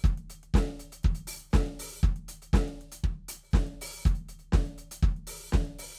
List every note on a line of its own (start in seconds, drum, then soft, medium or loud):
0.01 kick loud
0.01 hi-hat pedal soft
0.06 closed hi-hat medium
0.18 closed hi-hat soft
0.30 closed hi-hat medium
0.43 closed hi-hat soft
0.54 kick loud
0.54 snare loud
0.68 closed hi-hat soft
0.75 kick soft
0.80 closed hi-hat medium
0.92 closed hi-hat medium
1.04 kick loud
1.04 closed hi-hat medium
1.15 closed hi-hat medium
1.27 open hi-hat loud
1.42 open hi-hat soft
1.51 kick loud
1.51 snare loud
1.51 hi-hat pedal soft
1.66 closed hi-hat soft
1.72 kick soft
1.80 open hi-hat loud
1.93 open hi-hat soft
1.99 hi-hat pedal soft
2.03 kick loud
2.03 closed hi-hat soft
2.16 closed hi-hat soft
2.29 closed hi-hat medium
2.42 closed hi-hat medium
2.54 kick loud
2.54 snare loud
2.68 closed hi-hat soft
2.81 closed hi-hat soft
2.92 closed hi-hat medium
3.04 kick loud
3.04 closed hi-hat soft
3.29 closed hi-hat loud
3.44 open hi-hat soft
3.51 kick loud
3.51 snare loud
3.51 hi-hat pedal soft
3.67 closed hi-hat soft
3.74 kick soft
3.82 open hi-hat loud
3.94 open hi-hat soft
4.03 kick loud
4.03 hi-hat pedal soft
4.07 closed hi-hat medium
4.15 closed hi-hat soft
4.26 closed hi-hat medium
4.26 kick soft
4.39 closed hi-hat soft
4.53 kick loud
4.53 snare loud
4.65 closed hi-hat soft
4.78 closed hi-hat medium
4.91 closed hi-hat loud
5.03 kick loud
5.03 closed hi-hat soft
5.17 closed hi-hat soft
5.27 open hi-hat loud
5.51 kick loud
5.51 snare loud
5.51 hi-hat pedal medium
5.65 closed hi-hat soft
5.79 open hi-hat loud
5.93 open hi-hat soft